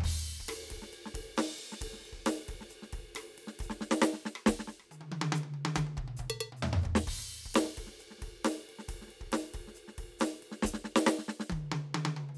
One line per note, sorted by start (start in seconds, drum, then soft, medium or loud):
0.01 kick medium
0.01 hi-hat pedal soft
0.01 crash loud
0.01 floor tom soft
0.17 kick soft
0.40 kick soft
0.49 cross-stick medium
0.49 hi-hat pedal soft
0.49 ride loud
0.71 kick soft
0.71 ride medium
0.77 kick soft
0.82 snare soft
0.92 hi-hat pedal soft
0.92 ride medium
1.06 snare soft
1.15 kick soft
1.15 ride loud
1.21 kick soft
1.37 snare loud
1.37 hi-hat pedal medium
1.37 ride medium
1.59 ride soft
1.72 snare soft
1.81 kick soft
1.81 hi-hat pedal medium
1.81 ride loud
1.88 kick soft
1.93 snare soft
2.00 snare soft
2.06 ride soft
2.13 kick soft
2.18 kick soft
2.26 snare loud
2.26 hi-hat pedal medium
2.26 ride loud
2.49 kick soft
2.49 ride medium
2.55 kick soft
2.61 snare soft
2.70 hi-hat pedal medium
2.70 ride medium
2.83 snare soft
2.93 kick soft
2.93 ride medium
3.00 kick soft
3.15 cross-stick medium
3.15 hi-hat pedal medium
3.15 ride medium
3.38 ride medium
3.47 snare soft
3.59 kick medium
3.59 hi-hat pedal medium
3.59 ride medium
3.68 kick soft
3.68 snare medium
3.81 snare medium
3.91 snare loud
4.02 snare loud
4.02 hi-hat pedal medium
4.14 snare soft
4.26 snare medium
4.36 cross-stick medium
4.47 kick soft
4.47 snare loud
4.47 hi-hat pedal medium
4.54 kick soft
4.59 snare soft
4.68 snare soft
4.80 cross-stick soft
4.91 hi-hat pedal soft
4.91 high tom soft
5.01 high tom medium
5.12 high tom medium
5.22 high tom loud
5.32 hi-hat pedal medium
5.32 high tom loud
5.44 high tom medium
5.54 high tom soft
5.65 high tom loud
5.75 kick soft
5.75 hi-hat pedal medium
5.75 high tom loud
5.83 kick soft
5.83 high tom medium
5.97 kick medium
5.97 mid tom medium
6.08 kick soft
6.08 mid tom medium
6.17 kick soft
6.17 hi-hat pedal medium
6.17 mid tom medium
6.30 percussion loud
6.41 percussion loud
6.53 mid tom medium
6.57 hi-hat pedal soft
6.63 floor tom loud
6.73 floor tom loud
6.82 kick soft
6.82 floor tom medium
6.82 hi-hat pedal soft
6.92 kick soft
6.92 snare loud
7.06 kick medium
7.06 hi-hat pedal soft
7.06 crash loud
7.19 kick soft
7.19 cross-stick soft
7.46 kick soft
7.51 kick soft
7.51 ride loud
7.56 snare loud
7.56 hi-hat pedal medium
7.64 snare soft
7.78 kick soft
7.78 ride medium
7.84 kick soft
7.84 snare soft
7.99 hi-hat pedal soft
7.99 ride soft
8.11 snare soft
8.18 kick soft
8.18 snare soft
8.22 ride medium
8.29 kick soft
8.44 snare loud
8.44 hi-hat pedal medium
8.44 ride loud
8.69 ride soft
8.79 snare soft
8.89 kick soft
8.89 hi-hat pedal soft
8.89 ride medium
8.96 kick soft
9.02 snare soft
9.07 snare soft
9.07 ride soft
9.21 kick soft
9.27 kick soft
9.32 snare medium
9.32 hi-hat pedal medium
9.32 ride medium
9.44 snare soft
9.54 kick soft
9.54 ride medium
9.61 kick soft
9.68 snare soft
9.75 hi-hat pedal medium
9.75 ride soft
9.88 snare soft
9.98 kick soft
9.98 ride medium
10.05 kick soft
10.19 snare loud
10.19 hi-hat pedal medium
10.19 ride medium
10.43 ride soft
10.52 snare soft
10.63 kick soft
10.63 snare loud
10.63 hi-hat pedal loud
10.71 kick soft
10.71 snare medium
10.85 snare medium
10.96 snare loud
11.07 snare loud
11.19 snare soft
11.28 snare medium
11.40 snare medium
11.50 kick soft
11.50 high tom loud
11.59 kick soft
11.72 high tom loud
11.95 high tom loud
12.05 high tom loud
12.17 high tom medium
12.29 high tom soft
12.35 hi-hat pedal soft